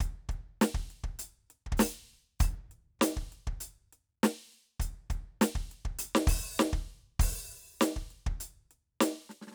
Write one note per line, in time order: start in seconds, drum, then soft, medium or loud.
0.01 closed hi-hat medium
0.01 kick medium
0.29 kick medium
0.29 closed hi-hat soft
0.62 closed hi-hat medium
0.62 snare loud
0.75 kick medium
0.91 closed hi-hat soft
1.04 kick medium
1.04 crash soft
1.20 closed hi-hat loud
1.51 closed hi-hat soft
1.67 kick soft
1.73 kick medium
1.78 open hi-hat loud
1.78 snare loud
1.78 hi-hat pedal medium
2.14 kick soft
2.40 open hi-hat loud
2.40 kick loud
2.40 hi-hat pedal medium
2.72 closed hi-hat soft
3.00 closed hi-hat loud
3.00 kick soft
3.00 snare loud
3.17 kick medium
3.33 closed hi-hat soft
3.48 kick medium
3.61 closed hi-hat medium
3.93 closed hi-hat soft
4.24 closed hi-hat medium
4.24 snare loud
4.53 closed hi-hat soft
4.80 closed hi-hat medium
4.80 kick medium
5.11 kick medium
5.11 closed hi-hat medium
5.42 closed hi-hat loud
5.42 snare loud
5.56 kick medium
5.72 closed hi-hat soft
5.86 kick medium
5.99 closed hi-hat loud
6.16 snare loud
6.28 open hi-hat loud
6.28 kick loud
6.59 snare loud
6.59 hi-hat pedal medium
6.74 kick medium
7.20 open hi-hat loud
7.20 kick loud
7.75 kick soft
7.80 closed hi-hat loud
7.80 snare loud
7.80 hi-hat pedal soft
7.97 kick medium
8.11 closed hi-hat soft
8.27 kick medium
8.41 closed hi-hat medium
8.71 closed hi-hat soft
9.01 closed hi-hat loud
9.01 snare loud
9.30 snare soft
9.30 closed hi-hat soft
9.42 snare soft
9.48 snare soft